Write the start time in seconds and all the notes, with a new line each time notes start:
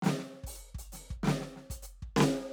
0.02 snare, hi-hat pedal
0.06 snare
0.19 snare
0.33 snare
0.43 open hi-hat, kick
0.55 hi-hat pedal
0.74 open hi-hat, kick
0.92 snare, hi-hat pedal
1.10 kick
1.23 snare
1.27 snare
1.41 snare
1.56 snare
1.70 closed hi-hat, kick
1.82 hi-hat pedal
2.02 kick
2.16 snare
2.20 snare